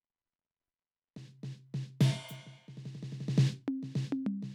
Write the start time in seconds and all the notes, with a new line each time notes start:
1.16 snare, floor tom
1.43 snare, floor tom
1.74 snare, floor tom
2.01 snare, ride
2.28 snare, hi-hat pedal
2.47 snare
2.68 snare
2.77 snare
2.85 snare
2.95 snare
3.03 snare
3.12 snare
3.20 snare
3.28 snare
3.38 snare
3.68 high tom
3.83 snare
3.95 snare
4.12 high tom
4.26 mid tom
4.43 snare